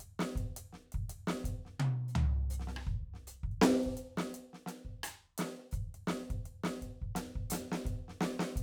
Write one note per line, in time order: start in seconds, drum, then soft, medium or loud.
0.01 closed hi-hat medium
0.20 snare medium
0.36 kick medium
0.36 closed hi-hat soft
0.57 closed hi-hat medium
0.73 snare soft
0.92 kick medium
0.92 closed hi-hat soft
1.10 closed hi-hat medium
1.28 snare medium
1.44 kick medium
1.44 closed hi-hat medium
1.65 snare soft
1.80 high tom loud
2.08 hi-hat pedal soft
2.16 floor tom loud
2.50 hi-hat pedal medium
2.60 snare soft
2.68 snare soft
2.77 cross-stick medium
2.87 kick medium
3.14 snare soft
3.28 closed hi-hat medium
3.44 kick medium
3.52 closed hi-hat soft
3.62 snare loud
3.84 kick soft
3.84 closed hi-hat soft
3.97 closed hi-hat medium
4.18 snare medium
4.35 closed hi-hat medium
4.54 snare soft
4.67 snare medium
4.67 closed hi-hat medium
4.85 kick soft
5.04 open hi-hat loud
5.04 cross-stick medium
5.08 cross-stick soft
5.38 snare medium
5.38 open hi-hat medium
5.45 snare soft
5.59 snare soft
5.72 kick medium
5.72 closed hi-hat soft
5.72 hi-hat pedal soft
5.95 closed hi-hat soft
6.08 snare medium
6.30 kick soft
6.30 closed hi-hat soft
6.46 closed hi-hat soft
6.64 snare medium
6.82 kick soft
6.82 closed hi-hat soft
7.02 kick soft
7.16 snare medium
7.16 closed hi-hat medium
7.36 kick soft
7.50 closed hi-hat loud
7.50 snare medium
7.72 snare medium
7.86 kick medium
7.86 closed hi-hat soft
8.08 snare soft
8.21 snare loud
8.40 snare medium
8.56 kick medium
8.56 open hi-hat medium